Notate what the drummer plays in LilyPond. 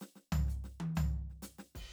\new DrumStaff \drummode { \time 4/4 \tempo 4 = 125 \tuplet 3/2 { <hhp sn>8 sn8 tomfh8 <sn hhp>8 sn8 <tommh hh>8 <hhp tomfh>8 r8 sn8 <sn hhp>8 sn8 <bd cymr>8 } | }